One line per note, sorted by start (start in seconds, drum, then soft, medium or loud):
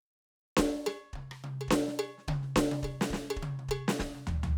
0.57 kick medium
0.57 snare loud
0.57 percussion medium
0.86 snare soft
0.86 percussion loud
1.13 kick soft
1.13 high tom medium
1.31 cross-stick medium
1.44 high tom loud
1.61 percussion medium
1.68 kick soft
1.68 snare loud
1.88 snare soft
1.99 percussion loud
2.18 snare soft
2.28 kick medium
2.28 high tom loud
2.42 snare soft
2.56 kick medium
2.56 snare loud
2.71 high tom loud
2.83 kick medium
2.83 percussion medium
3.01 snare loud
3.10 kick soft
3.10 snare medium
3.30 percussion loud
3.36 kick medium
3.42 high tom loud
3.59 high tom medium
3.68 kick soft
3.68 percussion loud
3.88 snare loud
3.99 kick medium
3.99 snare medium
4.15 crash soft
4.15 high tom soft
4.27 kick soft
4.27 floor tom loud
4.43 floor tom loud